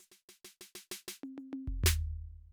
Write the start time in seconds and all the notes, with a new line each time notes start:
0.00 snare, hi-hat pedal
0.11 snare
0.29 snare
0.44 snare
0.61 snare
0.75 snare
0.91 snare
1.08 snare
1.23 closed hi-hat, high tom
1.38 closed hi-hat, high tom
1.53 high tom
1.67 kick
1.84 snare, floor tom